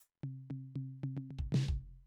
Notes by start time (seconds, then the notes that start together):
0.00 hi-hat pedal
0.23 floor tom, high tom
0.50 floor tom, high tom
0.75 floor tom, high tom
1.03 floor tom, high tom
1.16 floor tom, high tom
1.30 floor tom
1.38 kick
1.52 snare, floor tom
1.68 kick